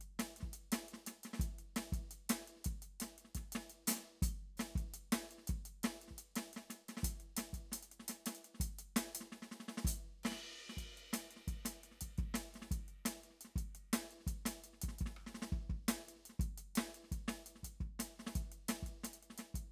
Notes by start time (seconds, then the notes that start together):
0.01 closed hi-hat
0.19 snare, closed hi-hat
0.36 snare, closed hi-hat
0.43 kick
0.53 closed hi-hat
0.72 snare, closed hi-hat
0.89 closed hi-hat
0.94 snare
1.07 snare, closed hi-hat
1.24 snare, closed hi-hat
1.33 snare
1.37 kick, snare
1.41 closed hi-hat
1.59 closed hi-hat
1.76 snare, closed hi-hat
1.93 kick, closed hi-hat
2.11 closed hi-hat
2.29 snare, closed hi-hat
2.48 closed hi-hat
2.56 snare
2.65 kick, closed hi-hat
2.82 closed hi-hat
3.00 snare, closed hi-hat
3.18 closed hi-hat
3.25 snare
3.35 kick, snare, closed hi-hat
3.52 snare, closed hi-hat
3.70 closed hi-hat
3.87 closed hi-hat, snare
3.91 snare
3.96 snare
4.04 snare
4.22 open hi-hat, kick
4.57 snare, closed hi-hat, hi-hat pedal
4.76 kick, closed hi-hat
4.94 closed hi-hat
5.12 snare, closed hi-hat
5.31 closed hi-hat
5.38 snare
5.48 kick, closed hi-hat
5.65 closed hi-hat
5.83 snare, closed hi-hat
6.02 closed hi-hat
6.08 kick, snare
6.18 closed hi-hat
6.36 snare, closed hi-hat
6.53 snare, closed hi-hat
6.70 snare, closed hi-hat
6.89 snare, closed hi-hat
6.97 snare
7.00 kick, snare
7.05 closed hi-hat
7.20 closed hi-hat
7.37 snare, closed hi-hat
7.53 kick, closed hi-hat
7.72 snare, closed hi-hat
7.83 closed hi-hat
7.92 closed hi-hat
8.00 snare
8.08 snare, closed hi-hat
8.26 snare, closed hi-hat
8.35 closed hi-hat
8.45 closed hi-hat
8.54 snare
8.60 kick, closed hi-hat
8.79 closed hi-hat
8.96 snare, closed hi-hat
9.15 closed hi-hat
9.21 snare
9.32 snare
9.42 snare
9.52 snare
9.60 snare
9.68 snare
9.78 snare
9.85 open hi-hat, kick
10.24 snare, crash
10.32 snare
10.69 snare
10.77 kick, closed hi-hat
10.97 closed hi-hat
11.13 snare, closed hi-hat
11.31 closed hi-hat
11.37 snare
11.48 kick, closed hi-hat
11.65 snare, closed hi-hat
11.84 closed hi-hat
11.92 snare
12.01 kick, closed hi-hat
12.18 kick, closed hi-hat
12.34 snare, closed hi-hat
12.54 snare, closed hi-hat
12.62 snare
12.71 kick, closed hi-hat
12.88 closed hi-hat
13.05 snare, closed hi-hat
13.24 closed hi-hat
13.31 snare
13.41 snare, closed hi-hat
13.56 kick, closed hi-hat
13.75 closed hi-hat
13.93 snare, closed hi-hat
14.11 closed hi-hat
14.21 snare
14.27 kick, closed hi-hat
14.46 snare, closed hi-hat
14.64 closed hi-hat
14.73 snare
14.82 kick, closed hi-hat
14.89 snare
14.99 kick, closed hi-hat
15.06 snare
15.17 cross-stick
15.27 snare
15.35 snare
15.42 snare
15.52 kick
15.70 kick
15.88 snare, closed hi-hat
16.09 closed hi-hat
16.16 snare
16.26 closed hi-hat
16.30 snare
16.40 kick, closed hi-hat
16.58 closed hi-hat
16.76 snare, closed hi-hat
16.95 closed hi-hat
17.04 snare
17.12 kick, closed hi-hat
17.28 snare, closed hi-hat
17.46 closed hi-hat
17.56 snare
17.63 kick, closed hi-hat
17.81 kick, closed hi-hat
17.99 snare, closed hi-hat
18.19 snare, closed hi-hat
18.27 snare
18.36 kick, closed hi-hat
18.52 closed hi-hat
18.69 snare, closed hi-hat
18.83 kick, closed hi-hat
19.04 snare, closed hi-hat
19.13 closed hi-hat
19.23 closed hi-hat
19.30 snare
19.38 snare, closed hi-hat
19.55 kick, closed hi-hat